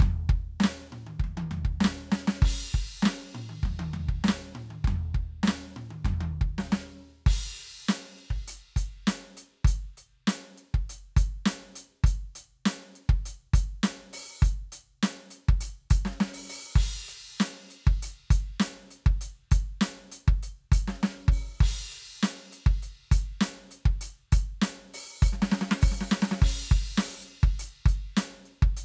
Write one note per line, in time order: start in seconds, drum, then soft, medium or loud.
0.01 kick loud
0.01 floor tom loud
0.30 kick loud
0.61 snare loud
0.65 snare loud
0.93 mid tom medium
1.07 high tom medium
1.20 kick medium
1.25 floor tom medium
1.38 high tom loud
1.52 floor tom loud
1.66 kick medium
1.81 snare loud
1.85 snare loud
2.13 snare loud
2.28 snare loud
2.43 kick loud
2.43 crash loud
2.75 kick medium
3.03 snare loud
3.06 snare loud
3.35 mid tom loud
3.50 high tom medium
3.64 kick medium
3.64 floor tom medium
3.80 high tom loud
3.94 floor tom loud
4.09 kick medium
4.25 snare loud
4.29 snare loud
4.56 mid tom medium
4.71 high tom medium
4.85 kick medium
4.85 floor tom loud
5.15 kick medium
5.44 snare loud
5.48 snare loud
5.77 mid tom medium
5.91 high tom medium
6.05 kick medium
6.05 floor tom loud
6.21 high tom loud
6.42 kick medium
6.59 snare loud
6.73 snare loud
7.27 kick loud
7.27 crash loud
7.57 open hi-hat soft
7.89 closed hi-hat loud
7.89 snare loud
8.19 closed hi-hat soft
8.31 kick medium
8.48 closed hi-hat loud
8.77 closed hi-hat loud
8.77 kick medium
9.08 closed hi-hat loud
9.08 snare loud
9.38 closed hi-hat medium
9.65 closed hi-hat loud
9.65 kick loud
9.98 closed hi-hat medium
10.28 closed hi-hat loud
10.28 snare loud
10.59 closed hi-hat medium
10.75 kick medium
10.90 closed hi-hat loud
11.17 closed hi-hat loud
11.17 kick loud
11.46 closed hi-hat loud
11.46 snare loud
11.76 closed hi-hat loud
12.05 closed hi-hat loud
12.05 kick loud
12.36 closed hi-hat loud
12.66 closed hi-hat loud
12.66 snare loud
12.96 closed hi-hat medium
13.10 kick loud
13.26 closed hi-hat loud
13.54 closed hi-hat loud
13.54 kick loud
13.84 closed hi-hat loud
13.84 snare loud
14.14 open hi-hat loud
14.42 closed hi-hat medium
14.42 kick loud
14.42 hi-hat pedal soft
14.73 closed hi-hat loud
15.04 closed hi-hat loud
15.04 snare loud
15.31 closed hi-hat medium
15.49 kick loud
15.62 closed hi-hat loud
15.91 closed hi-hat loud
15.91 kick loud
16.06 snare medium
16.21 snare loud
16.34 open hi-hat loud
16.50 open hi-hat loud
16.76 kick loud
16.76 hi-hat pedal soft
16.76 crash loud
17.09 closed hi-hat medium
17.41 closed hi-hat loud
17.41 snare loud
17.71 closed hi-hat medium
17.88 kick loud
17.88 snare soft
18.03 closed hi-hat loud
18.31 closed hi-hat loud
18.31 kick loud
18.61 closed hi-hat loud
18.61 snare loud
18.91 closed hi-hat medium
19.07 kick loud
19.22 closed hi-hat loud
19.52 closed hi-hat loud
19.52 kick loud
19.82 closed hi-hat loud
19.82 snare loud
20.12 closed hi-hat loud
20.29 kick loud
20.44 closed hi-hat medium
20.73 closed hi-hat loud
20.73 kick loud
20.89 snare medium
21.04 snare loud
21.29 open hi-hat medium
21.29 kick loud
21.37 open hi-hat medium
21.61 kick loud
21.61 crash loud
21.92 closed hi-hat medium
22.24 closed hi-hat loud
22.24 snare loud
22.53 closed hi-hat medium
22.67 kick loud
22.83 closed hi-hat medium
23.12 closed hi-hat loud
23.12 kick loud
23.42 closed hi-hat loud
23.42 snare loud
23.72 closed hi-hat medium
23.86 kick loud
24.02 closed hi-hat loud
24.33 closed hi-hat loud
24.33 kick loud
24.62 closed hi-hat loud
24.62 snare loud
24.95 open hi-hat loud
25.23 open hi-hat loud
25.23 kick loud
25.27 hi-hat pedal soft
25.33 snare medium
25.43 snare loud
25.53 snare loud
25.61 snare loud
25.61 hi-hat pedal soft
25.72 snare loud
25.82 open hi-hat loud
25.82 kick loud
25.92 snare medium
26.02 snare medium
26.12 snare loud
26.23 snare loud
26.32 snare loud
26.43 kick loud
26.43 crash loud
26.72 kick loud
26.72 snare soft
26.98 open hi-hat loud
26.98 snare loud
27.29 closed hi-hat medium
27.44 kick loud
27.44 snare soft
27.60 closed hi-hat loud
27.87 closed hi-hat medium
27.87 kick loud
27.87 snare soft
28.18 closed hi-hat loud
28.18 snare loud
28.46 closed hi-hat medium
28.63 kick loud
28.63 snare soft
28.78 closed hi-hat loud